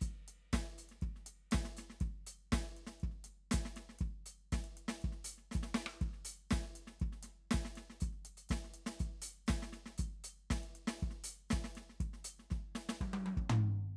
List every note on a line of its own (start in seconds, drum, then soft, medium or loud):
0.01 closed hi-hat medium
0.01 kick soft
0.28 closed hi-hat medium
0.53 kick medium
0.53 snare medium
0.53 closed hi-hat medium
0.78 closed hi-hat soft
0.89 snare soft
0.89 closed hi-hat soft
1.01 kick soft
1.01 closed hi-hat soft
1.16 snare soft
1.26 closed hi-hat medium
1.51 kick medium
1.51 snare medium
1.51 closed hi-hat medium
1.65 snare soft
1.77 closed hi-hat soft
1.77 snare soft
1.90 snare soft
2.00 kick medium
2.00 closed hi-hat soft
2.27 closed hi-hat medium
2.52 kick medium
2.52 snare medium
2.52 closed hi-hat medium
2.76 closed hi-hat soft
2.87 snare soft
3.00 kick soft
3.00 closed hi-hat soft
3.11 snare soft
3.24 snare soft
3.24 closed hi-hat medium
3.51 closed hi-hat medium
3.51 kick medium
3.51 snare medium
3.65 snare soft
3.76 snare soft
3.76 closed hi-hat soft
3.89 snare soft
3.99 kick medium
3.99 closed hi-hat soft
4.26 closed hi-hat medium
4.52 kick medium
4.52 snare medium
4.52 closed hi-hat medium
4.64 closed hi-hat soft
4.77 closed hi-hat soft
4.88 snare medium
5.02 kick soft
5.02 closed hi-hat soft
5.12 snare soft
5.24 open hi-hat medium
5.38 snare soft
5.51 kick medium
5.51 snare soft
5.51 hi-hat pedal medium
5.63 snare soft
5.74 snare medium
5.86 cross-stick medium
6.01 kick medium
6.01 closed hi-hat soft
6.13 snare soft
6.25 open hi-hat medium
6.50 kick medium
6.50 snare medium
6.50 closed hi-hat soft
6.50 hi-hat pedal soft
6.64 snare soft
6.75 closed hi-hat medium
6.87 snare soft
7.00 kick medium
7.00 closed hi-hat soft
7.12 snare soft
7.23 snare soft
7.23 closed hi-hat medium
7.51 kick medium
7.51 snare medium
7.51 closed hi-hat medium
7.65 snare soft
7.75 snare soft
7.75 closed hi-hat soft
7.90 snare soft
8.00 closed hi-hat soft
8.00 kick medium
8.12 snare soft
8.25 closed hi-hat medium
8.37 closed hi-hat soft
8.49 kick soft
8.49 snare medium
8.49 closed hi-hat medium
8.64 snare soft
8.74 closed hi-hat medium
8.86 snare medium
8.99 closed hi-hat soft
8.99 kick soft
9.22 open hi-hat loud
9.46 kick medium
9.46 snare medium
9.46 closed hi-hat medium
9.46 hi-hat pedal soft
9.62 snare soft
9.72 snare soft
9.72 closed hi-hat soft
9.86 snare soft
9.98 closed hi-hat medium
9.98 kick soft
10.24 closed hi-hat medium
10.50 kick medium
10.50 snare medium
10.50 closed hi-hat medium
10.63 closed hi-hat soft
10.75 closed hi-hat soft
10.87 snare medium
11.00 kick soft
11.00 closed hi-hat soft
11.10 snare soft
11.24 open hi-hat loud
11.49 kick medium
11.49 snare medium
11.49 closed hi-hat medium
11.49 hi-hat pedal soft
11.64 snare soft
11.75 snare soft
11.75 closed hi-hat soft
11.89 snare soft
12.00 kick soft
12.00 closed hi-hat soft
12.13 snare soft
12.24 closed hi-hat medium
12.39 snare soft
12.50 kick soft
12.50 snare soft
12.75 snare medium
12.89 snare medium
13.01 kick soft
13.01 high tom medium
13.13 high tom medium
13.26 high tom medium
13.37 kick medium
13.49 floor tom loud